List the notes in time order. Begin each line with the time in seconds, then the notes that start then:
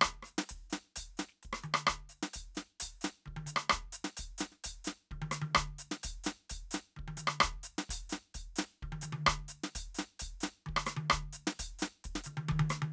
0.01 kick, cross-stick
0.22 cross-stick, hi-hat pedal
0.38 snare
0.49 kick, closed hi-hat
0.70 snare, hi-hat pedal
0.84 snare
0.95 closed hi-hat, kick
1.17 snare, hi-hat pedal
1.28 snare
1.42 kick, closed hi-hat
1.52 cross-stick
1.62 hi-hat pedal, high tom
1.74 cross-stick
1.86 kick, cross-stick
2.09 hi-hat pedal
2.22 snare
2.33 closed hi-hat, kick
2.55 snare, hi-hat pedal
2.80 closed hi-hat, kick
3.01 snare, hi-hat pedal
3.25 kick, high tom
3.36 high tom
3.46 hi-hat pedal, high tom
3.56 cross-stick
3.69 kick, cross-stick
3.92 hi-hat pedal
4.04 snare
4.16 closed hi-hat, kick
4.38 snare, hi-hat pedal
4.51 snare
4.64 closed hi-hat, kick
4.84 snare, hi-hat pedal
5.11 kick, high tom
5.21 high tom
5.31 cross-stick, hi-hat pedal
5.41 high tom
5.54 kick, cross-stick
5.78 hi-hat pedal
5.91 snare
6.03 closed hi-hat, kick
6.23 snare, hi-hat pedal
6.49 closed hi-hat, kick
6.70 snare, hi-hat pedal
6.96 kick, high tom
7.07 high tom
7.17 hi-hat pedal, high tom
7.27 cross-stick
7.40 kick, cross-stick
7.63 hi-hat pedal
7.78 snare
7.89 closed hi-hat, kick
8.09 snare, hi-hat pedal
8.34 closed hi-hat, kick
8.55 snare, hi-hat pedal
8.82 kick, high tom
8.92 high tom
9.01 hi-hat pedal, high tom
9.12 high tom
9.26 kick, cross-stick
9.48 hi-hat pedal
9.63 snare
9.75 closed hi-hat, kick
9.94 hi-hat pedal
9.98 snare
10.19 closed hi-hat, kick
10.40 snare, hi-hat pedal
10.66 kick, high tom
10.76 cross-stick
10.86 hi-hat pedal
10.96 high tom
11.10 kick, cross-stick
11.32 hi-hat pedal
11.47 snare
11.59 closed hi-hat, kick
11.78 snare, hi-hat pedal
12.04 kick, closed hi-hat
12.15 snare
12.23 hi-hat pedal, high tom
12.37 high tom
12.48 kick, high tom
12.59 high tom
12.69 cross-stick, hi-hat pedal
12.82 high tom